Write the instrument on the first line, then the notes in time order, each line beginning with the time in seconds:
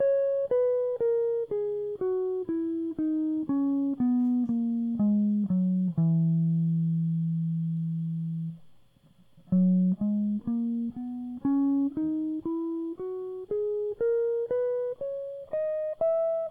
electric guitar
0.01 C#5
0.52 B4
1.01 A#4
1.52 G#4
2.02 F#4
2.50 E4
2.99 D#4
3.50 C#4
4.01 B3
4.50 A#3
5.01 G#3
5.52 F#3
5.99 E3
9.54 F#3
10.03 G#3
10.49 A#3
10.96 B3
11.46 C#4
11.98 D#4
12.46 E4
13.01 F#4
13.52 G#4
14.01 A#4
14.52 B4
15.02 C#5
15.54 D#5
16.02 E5